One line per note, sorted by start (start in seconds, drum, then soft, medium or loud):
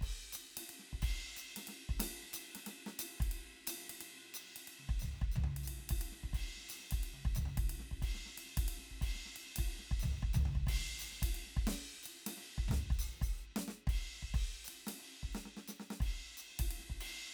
0.01 kick soft
0.01 crash medium
0.32 hi-hat pedal loud
0.32 ride medium
0.57 ride loud
0.69 ride medium
0.79 snare soft
0.93 kick soft
1.02 kick soft
1.02 ride medium
1.37 hi-hat pedal medium
1.37 ride medium
1.56 snare soft
1.56 ride medium
1.67 snare soft
1.67 ride medium
1.89 kick soft
2.00 snare medium
2.00 ride loud
2.23 snare soft
2.33 hi-hat pedal loud
2.33 ride medium
2.55 snare soft
2.55 ride medium
2.66 snare medium
2.66 ride medium
2.86 snare medium
2.99 hi-hat pedal loud
2.99 ride loud
3.20 kick soft
3.20 ride medium
3.31 ride medium
3.55 snare soft
3.67 hi-hat pedal loud
3.67 ride loud
3.89 ride medium
4.01 ride medium
4.23 snare soft
4.34 hi-hat pedal loud
4.34 ride medium
4.56 ride medium
4.67 ride medium
4.79 high tom soft
4.89 kick soft
4.99 floor tom medium
4.99 hi-hat pedal medium
5.14 high tom soft
5.21 kick soft
5.32 floor tom medium
5.32 hi-hat pedal soft
5.44 high tom medium
5.56 ride medium
5.63 hi-hat pedal medium
5.68 ride medium
5.79 snare soft
5.89 kick soft
5.89 ride medium
5.99 hi-hat pedal soft
5.99 ride medium
6.12 snare soft
6.23 kick soft
6.33 kick soft
6.33 ride medium
6.47 snare soft
6.57 snare soft
6.69 hi-hat pedal medium
6.69 ride medium
6.79 snare soft
6.91 kick soft
6.91 ride medium
7.03 ride medium
7.13 high tom soft
7.25 kick soft
7.35 floor tom medium
7.35 hi-hat pedal medium
7.45 high tom medium
7.57 kick medium
7.57 ride medium
7.69 ride medium
7.79 snare soft
7.91 kick soft
8.02 kick soft
8.02 ride medium
8.14 snare soft
8.25 snare soft
8.38 ride medium
8.45 snare soft
8.57 kick medium
8.57 ride medium
8.68 ride medium
8.78 snare soft
8.91 kick soft
9.01 kick soft
9.01 ride medium
9.15 snare soft
9.25 snare soft
9.36 ride medium
9.46 snare soft
9.56 kick soft
9.56 ride loud
9.67 ride medium
9.79 snare soft
9.91 kick soft
9.99 floor tom medium
9.99 hi-hat pedal medium
10.12 high tom soft
10.22 kick soft
10.33 floor tom loud
10.33 hi-hat pedal medium
10.45 high tom medium
10.55 kick soft
10.67 kick soft
10.67 ride loud
10.79 snare soft
10.92 snare soft
10.99 hi-hat pedal medium
10.99 ride medium
11.12 snare soft
11.22 kick soft
11.22 ride loud
11.35 ride medium
11.46 snare soft
11.56 kick soft
11.67 snare medium
11.67 crash medium
11.93 snare soft
12.03 hi-hat pedal medium
12.03 ride medium
12.26 snare medium
12.26 ride loud
12.37 snare soft
12.37 ride medium
12.58 kick soft
12.68 snare medium
12.68 floor tom medium
12.90 kick soft
12.90 percussion soft
12.99 hi-hat pedal medium
13.21 kick soft
13.21 percussion medium
13.56 snare medium
13.68 snare medium
13.87 kick medium
13.87 ride medium
14.22 kick soft
14.34 kick medium
14.34 crash medium
14.64 hi-hat pedal medium
14.64 ride medium
14.87 snare medium
14.87 ride medium
14.99 ride medium
15.23 kick soft
15.32 snare medium
15.32 hi-hat pedal soft
15.45 snare soft
15.57 snare medium
15.68 snare medium
15.68 hi-hat pedal medium
15.80 snare medium
15.90 snare medium
16.00 kick soft
16.00 ride medium
16.37 hi-hat pedal medium
16.37 ride soft
16.50 snare soft
16.59 kick soft
16.59 ride loud
16.71 ride medium
16.79 snare soft
16.90 kick soft
17.01 ride medium
17.18 snare soft